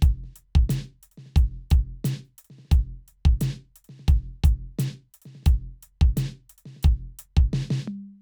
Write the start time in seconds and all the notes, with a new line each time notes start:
0.01 closed hi-hat, kick, snare
0.08 snare
0.26 snare
0.33 snare
0.38 closed hi-hat
0.57 kick
0.72 open hi-hat, snare
0.86 hi-hat pedal
1.05 closed hi-hat
1.14 closed hi-hat
1.20 snare
1.28 snare
1.38 closed hi-hat, kick
1.47 snare
1.54 snare
1.73 closed hi-hat, kick
2.07 closed hi-hat, snare
2.27 hi-hat pedal
2.40 closed hi-hat
2.47 closed hi-hat
2.52 snare
2.61 snare
2.67 snare
2.73 closed hi-hat, kick, snare
2.78 snare
3.10 closed hi-hat
3.27 kick
3.43 closed hi-hat, snare
3.78 closed hi-hat
3.87 closed hi-hat
3.91 snare
4.02 snare
4.10 closed hi-hat, kick, snare
4.17 snare
4.28 snare
4.46 closed hi-hat, kick
4.81 closed hi-hat, snare
5.16 closed hi-hat
5.24 closed hi-hat, snare
5.37 snare
5.45 closed hi-hat, kick, snare
5.53 snare
5.85 closed hi-hat
6.03 kick
6.19 closed hi-hat, snare
6.52 closed hi-hat
6.60 closed hi-hat
6.68 snare
6.79 snare
6.85 closed hi-hat, kick
6.90 snare
7.21 closed hi-hat
7.39 kick
7.55 snare
7.73 snare
7.90 mid tom